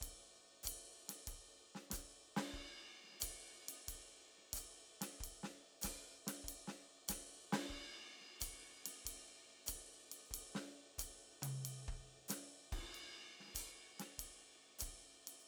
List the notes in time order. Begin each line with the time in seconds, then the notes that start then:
0.01 kick, ride
0.63 kick, hi-hat pedal
0.67 ride
1.08 snare, ride
1.27 kick, ride
1.75 snare
1.90 kick, snare, hi-hat pedal, ride
2.36 snare, ride
2.53 kick
3.04 snare
3.08 snare
3.12 snare
3.13 snare
3.20 kick, hi-hat pedal, ride
3.68 snare, ride
3.88 kick, ride
4.37 snare
4.53 kick, hi-hat pedal, ride
5.01 snare, ride
5.20 kick, ride
5.43 snare
5.81 kick, snare, hi-hat pedal, ride
6.27 snare, ride
6.44 kick
6.48 ride
6.67 snare
7.08 kick, snare, hi-hat pedal, ride
7.52 snare, ride
7.69 kick
8.20 snare
8.40 kick, hi-hat pedal, ride
8.86 snare, ride
9.05 kick, ride
9.66 kick, hi-hat pedal, ride
10.12 ride
10.25 hi-hat pedal
10.31 kick, ride
10.55 snare
10.98 kick, hi-hat pedal, ride
11.42 high tom, ride
11.65 ride
11.88 kick
12.28 snare, hi-hat pedal, ride
12.72 kick, ride
12.94 ride
13.40 snare
13.44 snare
13.47 snare
13.51 kick, snare, hi-hat pedal
13.56 ride
13.99 snare, ride
14.18 kick, ride
14.79 kick, hi-hat pedal, ride
15.27 ride
15.39 hi-hat pedal